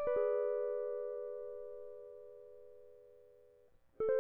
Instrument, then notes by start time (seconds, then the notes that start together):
electric guitar
0.00 D5
0.08 B4
0.19 G#4
4.01 A4
4.10 C5